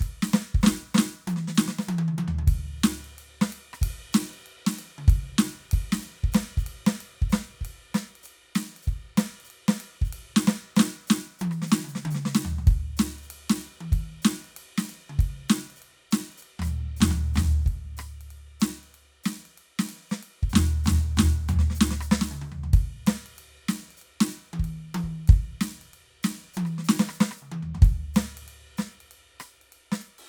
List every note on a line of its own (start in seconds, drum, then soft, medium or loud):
0.01 kick medium
0.01 ride medium
0.23 snare loud
0.28 hi-hat pedal soft
0.34 snare loud
0.55 kick medium
0.61 snare loud
0.61 hi-hat pedal soft
0.67 snare loud
0.95 snare loud
0.99 snare loud
0.99 hi-hat pedal medium
1.28 hi-hat pedal medium
1.28 high tom loud
1.37 snare soft
1.48 snare medium
1.55 snare loud
1.55 hi-hat pedal medium
1.69 snare medium
1.79 snare medium
1.79 hi-hat pedal soft
1.89 high tom loud
2.09 mid tom medium
2.19 high tom loud
2.28 floor tom loud
2.39 mid tom medium
2.48 kick medium
2.48 ride medium
2.80 hi-hat pedal soft
2.84 snare loud
2.84 ride medium
3.05 ride soft
3.19 hi-hat pedal soft
3.19 ride medium
3.42 snare loud
3.49 hi-hat pedal medium
3.49 ride medium
3.74 cross-stick medium
3.82 kick medium
3.82 ride loud
4.13 snare loud
4.13 hi-hat pedal medium
4.13 ride medium
4.34 ride soft
4.40 hi-hat pedal soft
4.47 ride soft
4.67 snare loud
4.72 hi-hat pedal medium
4.79 ride medium
4.99 mid tom medium
5.08 kick loud
5.08 ride medium
5.39 snare loud
5.39 ride medium
5.72 kick medium
5.72 ride medium
5.93 snare loud
5.99 hi-hat pedal soft
6.04 ride medium
6.24 kick medium
6.33 snare loud
6.33 hi-hat pedal medium
6.33 ride medium
6.58 kick medium
6.58 hi-hat pedal soft
6.67 ride medium
6.87 snare loud
7.01 ride medium
7.22 kick medium
7.30 kick soft
7.30 snare loud
7.30 hi-hat pedal medium
7.30 ride medium
7.62 kick soft
7.62 ride medium
7.95 snare loud
7.95 hi-hat pedal medium
7.95 ride medium
8.16 ride soft
8.24 hi-hat pedal medium
8.24 ride medium
8.56 snare loud
8.56 hi-hat pedal medium
8.56 ride medium
8.77 ride soft
8.83 hi-hat pedal soft
8.88 kick medium
8.88 ride soft
9.18 snare loud
9.18 hi-hat pedal medium
9.18 ride medium
9.41 ride soft
9.45 hi-hat pedal soft
9.51 ride soft
9.69 snare loud
9.69 hi-hat pedal medium
9.81 ride medium
10.02 kick medium
10.02 hi-hat pedal soft
10.13 ride medium
10.37 snare loud
10.48 snare loud
10.76 snare loud
10.76 hi-hat pedal medium
10.80 snare loud
11.08 snare loud
11.08 hi-hat pedal medium
11.39 hi-hat pedal medium
11.39 high tom loud
11.52 cross-stick medium
11.63 snare medium
11.68 hi-hat pedal medium
11.72 snare loud
11.85 hi-hat pedal medium
11.85 mid tom medium
11.96 snare medium
12.06 mid tom loud
12.11 hi-hat pedal medium
12.15 snare medium
12.26 snare medium
12.35 snare loud
12.35 hi-hat pedal medium
12.46 floor tom medium
12.59 floor tom medium
12.68 kick loud
12.68 ride medium
12.97 snare loud
12.97 hi-hat pedal medium
12.97 ride medium
13.19 ride soft
13.23 hi-hat pedal soft
13.31 ride medium
13.50 snare loud
13.55 hi-hat pedal medium
13.62 ride medium
13.81 high tom medium
13.93 kick medium
13.93 ride medium
14.23 snare loud
14.23 hi-hat pedal medium
14.23 ride medium
14.45 ride soft
14.57 ride medium
14.78 snare loud
14.84 hi-hat pedal medium
14.90 ride medium
15.10 mid tom medium
15.19 kick medium
15.19 ride medium
15.49 snare loud
15.49 hi-hat pedal medium
15.49 ride medium
15.71 ride soft
15.77 hi-hat pedal soft
15.83 ride soft
16.12 snare loud
16.12 hi-hat pedal medium
16.12 ride medium
16.33 ride soft
16.38 hi-hat pedal medium
16.43 ride soft
16.60 cross-stick medium
16.60 floor tom loud
16.65 floor tom soft
16.65 hi-hat pedal medium
16.97 hi-hat pedal medium
17.01 snare loud
17.01 floor tom loud
17.11 floor tom loud
17.34 snare medium
17.34 floor tom loud
17.34 hi-hat pedal soft
17.62 hi-hat pedal soft
17.66 kick medium
17.66 ride soft
17.97 cross-stick medium
17.97 hi-hat pedal medium
17.97 ride soft
18.21 ride soft
18.31 ride soft
18.61 snare loud
18.61 hi-hat pedal medium
18.61 ride medium
18.84 ride soft
18.95 ride soft
19.24 snare medium
19.24 hi-hat pedal medium
19.24 ride medium
19.46 ride soft
19.58 ride soft
19.79 snare loud
19.79 hi-hat pedal soft
19.89 ride medium
20.10 snare medium
20.10 hi-hat pedal soft
20.23 ride medium
20.43 kick medium
20.50 floor tom loud
20.50 hi-hat pedal medium
20.56 snare loud
20.84 snare loud
20.84 floor tom loud
20.84 hi-hat pedal medium
21.17 snare loud
21.17 floor tom loud
21.17 hi-hat pedal medium
21.49 floor tom loud
21.49 hi-hat pedal medium
21.59 snare medium
21.71 snare medium
21.76 hi-hat pedal medium
21.81 snare loud
21.91 snare medium
22.01 cross-stick medium
22.01 hi-hat pedal medium
22.12 snare loud
22.22 snare medium
22.26 hi-hat pedal soft
22.32 mid tom medium
22.42 mid tom medium
22.52 floor tom medium
22.64 floor tom medium
22.74 kick loud
22.74 ride medium
23.07 snare loud
23.07 hi-hat pedal medium
23.07 ride medium
23.27 ride soft
23.35 hi-hat pedal soft
23.35 ride medium
23.69 snare loud
23.69 hi-hat pedal medium
23.69 ride medium
23.91 ride soft
23.98 hi-hat pedal soft
24.02 ride soft
24.21 snare loud
24.30 hi-hat pedal medium
24.30 ride soft
24.54 high tom loud
24.60 kick medium
24.65 ride soft
24.95 high tom loud
24.95 ride medium
25.04 kick soft
25.28 kick loud
25.28 ride medium
25.61 snare medium
25.61 hi-hat pedal medium
25.61 ride medium
25.82 ride soft
25.94 ride soft
26.24 snare loud
26.24 hi-hat pedal medium
26.24 ride medium
26.54 hi-hat pedal medium
26.54 high tom loud
26.66 cross-stick soft
26.79 snare soft
26.85 hi-hat pedal medium
26.89 snare loud
27.00 snare loud
27.09 cross-stick medium
27.14 hi-hat pedal medium
27.21 snare loud
27.32 cross-stick medium
27.37 hi-hat pedal soft
27.43 mid tom soft
27.52 high tom loud
27.63 floor tom medium
27.75 floor tom medium
27.83 kick loud
27.83 ride medium
28.15 snare loud
28.15 hi-hat pedal soft
28.15 ride medium
28.38 ride medium
28.49 ride medium
28.78 snare medium
28.78 hi-hat pedal medium
28.78 ride soft
29.01 ride soft
29.12 ride soft
29.40 cross-stick medium
29.40 hi-hat pedal soft
29.40 ride soft
29.62 ride soft
29.73 ride soft
29.93 snare medium
29.93 hi-hat pedal soft
30.02 ride soft
30.19 crash medium